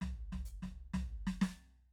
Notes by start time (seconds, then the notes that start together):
0.01 snare, floor tom
0.32 snare, floor tom
0.45 hi-hat pedal
0.62 snare, floor tom
0.94 snare, floor tom
1.27 snare
1.41 snare